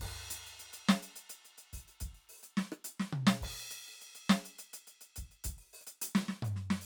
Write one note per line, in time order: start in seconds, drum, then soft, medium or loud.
0.01 kick soft
0.01 crash medium
0.11 kick soft
0.30 closed hi-hat loud
0.46 closed hi-hat soft
0.59 closed hi-hat medium
0.73 closed hi-hat medium
0.89 snare loud
1.03 closed hi-hat medium
1.16 closed hi-hat medium
1.29 closed hi-hat medium
1.45 closed hi-hat soft
1.58 closed hi-hat medium
1.73 open hi-hat medium
1.73 kick soft
1.88 open hi-hat soft
2.00 closed hi-hat medium
2.00 kick soft
2.07 kick soft
2.10 kick soft
2.15 open hi-hat soft
2.29 open hi-hat medium
2.43 open hi-hat medium
2.57 snare loud
2.72 cross-stick medium
2.84 closed hi-hat medium
3.00 snare medium
3.13 high tom loud
3.27 snare loud
3.41 kick soft
3.41 crash medium
3.47 kick soft
3.49 kick soft
3.60 closed hi-hat soft
3.71 closed hi-hat medium
3.88 closed hi-hat soft
4.01 closed hi-hat soft
4.15 closed hi-hat medium
4.30 snare loud
4.45 closed hi-hat medium
4.59 closed hi-hat medium
4.73 closed hi-hat medium
4.87 closed hi-hat soft
5.01 closed hi-hat medium
5.16 closed hi-hat medium
5.16 kick soft
5.31 closed hi-hat soft
5.44 closed hi-hat loud
5.44 kick soft
5.51 kick soft
5.58 open hi-hat soft
5.73 open hi-hat medium
5.81 hi-hat pedal soft
5.87 closed hi-hat medium
6.02 closed hi-hat loud
6.15 snare loud
6.28 snare medium
6.42 hi-hat pedal medium
6.42 mid tom loud
6.56 snare soft
6.70 snare loud
6.81 hi-hat pedal medium